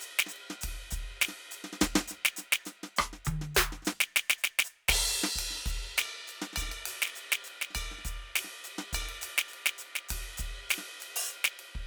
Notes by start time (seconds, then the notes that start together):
0.00 hi-hat pedal
0.19 snare
0.26 snare, hi-hat pedal
0.36 ride
0.50 snare
0.61 kick, hi-hat pedal, ride
0.68 snare
0.74 snare
0.89 kick, snare, hi-hat pedal, ride
1.01 kick
1.21 snare, hi-hat pedal, ride
1.28 snare
1.51 hi-hat pedal, ride
1.64 snare
1.73 snare
1.81 kick, snare, hi-hat pedal
1.95 snare
2.00 snare
2.07 snare, hi-hat pedal
2.25 snare
2.36 snare, hi-hat pedal
2.52 snare
2.65 snare, hi-hat pedal
2.83 snare
2.96 kick, cross-stick, hi-hat pedal
3.13 snare
3.25 kick, hi-hat pedal, high tom
3.33 kick
3.41 snare
3.54 kick, snare, hi-hat pedal
3.72 snare
3.82 snare, hi-hat pedal
3.87 snare
4.00 snare
4.16 snare, hi-hat pedal
4.30 snare
4.38 hi-hat pedal
4.44 snare
4.59 snare
4.64 hi-hat pedal
4.88 kick, snare, hi-hat pedal, crash
4.95 kick
5.23 snare
5.35 kick, hi-hat pedal, ride
5.50 snare
5.55 snare
5.58 snare
5.66 kick, hi-hat pedal, ride
5.76 kick
5.97 snare, hi-hat pedal, ride bell
6.27 hi-hat pedal, ride
6.41 snare
6.53 snare, ride bell
6.57 kick, hi-hat pedal
6.62 kick, snare
6.69 snare, ride bell
6.85 hi-hat pedal, ride
7.02 snare
7.06 snare
7.15 hi-hat pedal, ride
7.32 snare
7.44 hi-hat pedal, ride
7.61 snare
7.70 snare
7.75 kick, hi-hat pedal, ride bell
7.91 snare
7.98 snare
8.05 kick, hi-hat pedal, ride
8.13 kick
8.35 snare, hi-hat pedal, ride
8.44 snare
8.64 hi-hat pedal, ride
8.78 snare
8.93 kick, snare, hi-hat pedal, ride bell
9.01 snare
9.05 snare, ride
9.21 hi-hat pedal, ride
9.38 snare
9.48 hi-hat pedal
9.53 ride
9.66 snare
9.78 hi-hat pedal
9.82 ride
9.95 snare
10.09 kick, snare, hi-hat pedal, ride
10.22 snare
10.37 kick, hi-hat pedal, ride
10.48 kick
10.69 snare, hi-hat pedal, ride
10.78 snare
11.00 hi-hat pedal, ride
11.16 open hi-hat
11.26 hi-hat pedal
11.30 ride
11.44 snare
11.59 ride
11.75 kick